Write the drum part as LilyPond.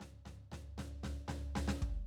\new DrumStaff \drummode { \time 4/4 \tempo 4 = 116 <sn tomfh>8 <sn tomfh>8 <tomfh sn>8 <sn tomfh>8 <sn tomfh>8 <sn tomfh>8 <sn tomfh>16 <sn tomfh>16 bd8 | }